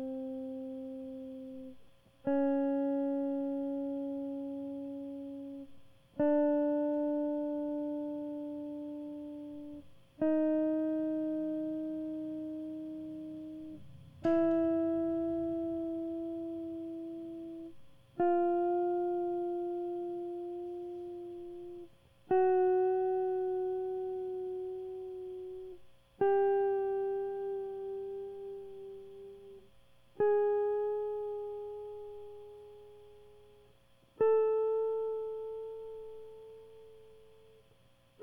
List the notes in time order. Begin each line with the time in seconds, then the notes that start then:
2.28 C#4
6.20 D4
10.22 D#4
14.26 E4
18.20 F4
22.31 F#4
26.22 G4
30.21 G#4
34.21 A4